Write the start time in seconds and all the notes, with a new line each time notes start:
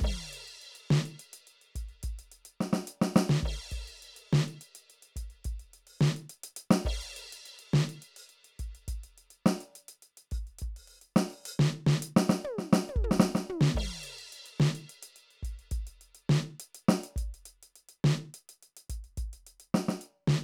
0.01 kick, hi-hat pedal, crash
0.08 kick
0.12 kick
0.34 closed hi-hat
0.48 closed hi-hat
0.62 closed hi-hat
0.76 closed hi-hat
0.91 snare
1.06 closed hi-hat
1.20 closed hi-hat
1.34 closed hi-hat
1.48 closed hi-hat
1.62 closed hi-hat
1.76 closed hi-hat, kick
1.89 closed hi-hat
2.04 closed hi-hat, kick
2.20 closed hi-hat
2.32 closed hi-hat
2.46 closed hi-hat
2.61 snare
2.74 snare
2.83 hi-hat pedal
2.88 closed hi-hat
3.02 snare
3.14 snare, hi-hat pedal
3.30 snare
3.38 hi-hat pedal
3.43 kick, crash
3.49 kick
3.72 closed hi-hat, kick
3.88 closed hi-hat
3.96 closed hi-hat
4.03 closed hi-hat
4.17 closed hi-hat
4.34 snare
4.49 closed hi-hat
4.62 closed hi-hat
4.76 closed hi-hat
4.91 closed hi-hat
5.03 closed hi-hat
5.17 closed hi-hat, kick
5.31 closed hi-hat
5.45 closed hi-hat, kick
5.60 closed hi-hat
5.74 closed hi-hat
5.88 open hi-hat
6.02 snare
6.15 closed hi-hat, hi-hat pedal
6.30 closed hi-hat
6.44 closed hi-hat
6.57 closed hi-hat
6.71 snare
6.86 kick, crash
7.02 closed hi-hat
7.17 closed hi-hat
7.33 closed hi-hat
7.46 closed hi-hat
7.60 closed hi-hat
7.74 snare
7.90 closed hi-hat
8.03 closed hi-hat
8.17 open hi-hat
8.30 closed hi-hat
8.45 closed hi-hat
8.60 closed hi-hat, kick
8.76 closed hi-hat
8.89 closed hi-hat, kick
9.04 closed hi-hat
9.18 closed hi-hat
9.31 closed hi-hat
9.47 snare
9.61 closed hi-hat
9.76 closed hi-hat
9.89 closed hi-hat
10.03 closed hi-hat
10.18 closed hi-hat
10.32 open hi-hat, kick
10.37 hi-hat pedal
10.48 closed hi-hat
10.59 closed hi-hat, kick
10.77 open hi-hat
10.88 open hi-hat
11.02 open hi-hat
11.17 snare
11.31 open hi-hat
11.46 open hi-hat
11.51 hi-hat pedal
11.60 snare
11.87 snare
12.03 closed hi-hat
12.17 snare
12.30 snare
12.36 hi-hat pedal
12.45 high tom
12.59 snare
12.74 snare
12.88 hi-hat pedal, high tom
12.97 kick
13.04 kick, mid tom
13.07 kick
13.12 snare
13.20 snare
13.36 snare
13.50 floor tom
13.62 snare
13.68 hi-hat pedal
13.75 kick, crash
13.81 kick
14.04 closed hi-hat
14.19 closed hi-hat
14.33 closed hi-hat
14.46 closed hi-hat
14.61 snare
14.76 closed hi-hat
14.90 closed hi-hat
15.03 closed hi-hat
15.17 closed hi-hat
15.31 closed hi-hat
15.43 closed hi-hat, kick
15.60 closed hi-hat
15.72 closed hi-hat, kick
15.80 kick
15.88 closed hi-hat
16.02 closed hi-hat
16.15 closed hi-hat
16.30 snare
16.60 closed hi-hat
16.75 closed hi-hat
16.89 snare
17.04 closed hi-hat
17.17 closed hi-hat, kick
17.23 kick
17.35 closed hi-hat
17.46 closed hi-hat
17.63 closed hi-hat
17.76 closed hi-hat
17.89 closed hi-hat
18.05 snare
18.35 closed hi-hat
18.50 closed hi-hat
18.63 closed hi-hat
18.77 closed hi-hat
18.90 closed hi-hat, kick
19.05 closed hi-hat
19.18 closed hi-hat, kick
19.34 closed hi-hat
19.47 closed hi-hat
19.61 closed hi-hat
19.75 snare
19.89 snare
19.94 hi-hat pedal
20.02 closed hi-hat
20.28 snare